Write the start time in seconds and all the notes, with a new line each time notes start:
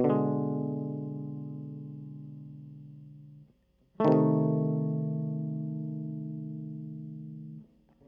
0.00 B2
0.05 D3
0.09 G#3
4.00 A3
4.04 C3 D#3